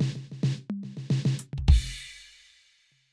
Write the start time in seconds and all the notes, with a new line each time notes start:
0.01 snare
0.16 snare
0.32 snare
0.44 snare
0.70 mid tom
0.84 snare
0.97 snare
1.11 snare
1.26 snare
1.39 closed hi-hat
1.54 floor tom
1.58 kick
1.68 kick, crash
2.92 floor tom